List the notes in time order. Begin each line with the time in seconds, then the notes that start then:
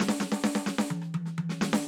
0.00 snare
0.08 snare
0.20 snare
0.32 snare
0.44 snare
0.55 snare
0.66 snare
0.78 snare
0.90 high tom
1.02 cross-stick
1.14 high tom
1.25 snare
1.38 high tom
1.49 snare
1.61 snare
1.73 snare